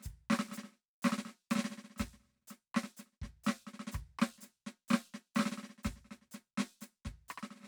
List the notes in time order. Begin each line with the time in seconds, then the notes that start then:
0.01 snare, hi-hat pedal
0.05 kick, snare
0.31 snare
0.33 cross-stick, snare
0.40 snare
0.45 snare
0.49 snare
0.52 snare, hi-hat pedal
0.58 snare
0.64 snare
0.68 snare
0.72 snare
1.03 snare, hi-hat pedal
1.07 cross-stick, snare
1.13 snare
1.19 snare
1.26 snare
1.28 snare
1.51 snare, hi-hat pedal
1.56 snare
1.59 snare
1.65 snare
1.71 snare
1.78 snare
1.85 snare
1.91 snare
1.97 snare, hi-hat pedal
2.00 kick, snare
2.14 snare
2.20 snare
2.24 snare
2.29 snare
2.33 snare
2.36 snare
2.42 snare
2.48 snare, hi-hat pedal
2.75 cross-stick, snare
2.84 snare
2.97 snare, hi-hat pedal
3.07 snare
3.13 snare
3.22 kick, snare
3.44 snare, hi-hat pedal
3.49 snare
3.68 snare
3.74 snare
3.80 snare
3.88 snare
3.92 kick, cross-stick, snare, hi-hat pedal
4.01 kick
4.19 cross-stick, snare
4.39 snare, hi-hat pedal
4.43 snare
4.67 snare
4.89 snare, hi-hat pedal
4.94 snare
5.15 snare
5.36 snare, hi-hat pedal
5.40 snare
5.41 snare
5.46 snare
5.52 snare
5.58 snare
5.64 snare
5.70 snare
5.79 snare
5.84 kick, snare, hi-hat pedal
5.97 snare
6.05 snare
6.12 snare
6.22 snare
6.26 snare
6.32 snare, hi-hat pedal
6.58 snare
6.60 snare
6.82 snare, hi-hat pedal
6.93 snare
7.06 kick, snare
7.29 cross-stick, hi-hat pedal
7.38 cross-stick
7.44 snare
7.51 snare
7.56 snare
7.61 snare
7.64 snare